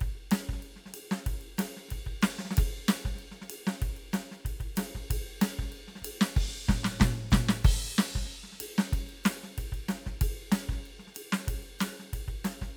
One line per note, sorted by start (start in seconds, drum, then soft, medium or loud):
0.01 kick medium
0.01 ride medium
0.31 snare loud
0.31 hi-hat pedal medium
0.31 ride loud
0.49 kick medium
0.49 snare soft
0.59 snare soft
0.59 ride soft
0.76 snare soft
0.86 kick soft
0.86 snare soft
0.89 snare soft
0.94 hi-hat pedal medium
0.94 ride loud
1.11 snare loud
1.26 kick medium
1.26 ride medium
1.41 ride soft
1.58 snare loud
1.58 hi-hat pedal medium
1.58 ride loud
1.77 snare soft
1.89 kick medium
1.89 snare soft
1.89 ride medium
1.95 snare soft
2.06 kick medium
2.06 ride soft
2.22 snare loud
2.22 hi-hat pedal medium
2.22 ride medium
2.39 snare medium
2.45 snare medium
2.51 snare medium
2.57 kick loud
2.57 ride loud
2.89 snare loud
2.89 hi-hat pedal medium
2.89 ride loud
3.05 kick medium
3.05 snare soft
3.16 snare soft
3.16 ride soft
3.28 kick soft
3.28 snare soft
3.50 hi-hat pedal medium
3.50 ride loud
3.67 snare loud
3.82 kick medium
3.82 ride medium
3.97 ride soft
4.13 snare loud
4.13 hi-hat pedal medium
4.13 ride bell medium
4.32 snare soft
4.45 kick medium
4.45 ride medium
4.60 kick medium
4.60 ride soft
4.76 snare loud
4.76 hi-hat pedal medium
4.76 ride loud
4.95 kick soft
4.95 snare soft
5.11 kick medium
5.11 ride loud
5.41 snare loud
5.41 hi-hat pedal medium
5.41 ride loud
5.59 kick medium
5.59 snare soft
5.72 ride soft
5.88 snare soft
5.96 snare soft
6.02 kick soft
6.02 hi-hat pedal medium
6.02 ride loud
6.21 snare loud
6.37 kick medium
6.37 ride medium
6.69 kick medium
6.69 snare loud
6.69 mid tom loud
6.84 snare loud
6.84 mid tom medium
7.00 kick medium
7.00 cross-stick soft
7.00 snare loud
7.00 hi-hat pedal medium
7.00 mid tom loud
7.31 kick medium
7.31 snare loud
7.31 hi-hat pedal medium
7.31 mid tom loud
7.49 snare loud
7.65 kick loud
7.65 crash loud
7.97 snare loud
7.97 hi-hat pedal medium
7.97 ride medium
8.15 kick medium
8.15 snare soft
8.25 snare soft
8.25 hi-hat pedal soft
8.44 snare soft
8.53 snare soft
8.60 kick soft
8.60 hi-hat pedal medium
8.60 ride loud
8.78 snare loud
8.93 kick medium
8.93 ride medium
9.09 ride soft
9.24 snare loud
9.24 hi-hat pedal medium
9.24 ride loud
9.44 snare soft
9.58 kick medium
9.58 ride medium
9.72 kick medium
9.72 ride soft
9.89 snare loud
9.89 hi-hat pedal medium
9.89 ride medium
10.06 kick soft
10.06 snare soft
10.21 kick medium
10.21 ride loud
10.52 snare loud
10.52 hi-hat pedal medium
10.52 ride loud
10.69 kick medium
10.69 snare soft
10.86 ride soft
10.99 snare soft
11.07 snare soft
11.11 snare soft
11.11 hi-hat pedal medium
11.16 ride loud
11.33 snare loud
11.48 kick medium
11.48 ride loud
11.63 ride soft
11.79 snare loud
11.79 hi-hat pedal medium
11.79 ride loud
12.00 snare soft
12.13 kick medium
12.13 ride medium
12.28 kick medium
12.28 ride soft
12.44 snare medium
12.44 hi-hat pedal medium
12.44 ride medium
12.62 kick soft
12.62 snare soft